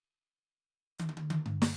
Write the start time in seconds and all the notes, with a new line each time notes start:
0.99 hi-hat pedal, high tom
1.09 high tom
1.17 high tom
1.30 high tom
1.46 floor tom
1.62 snare, crash